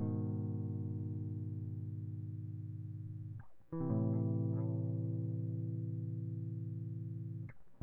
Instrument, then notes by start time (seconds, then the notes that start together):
electric guitar
0.00 G#2 B2 D#3
3.74 E3
3.82 C3
3.92 A2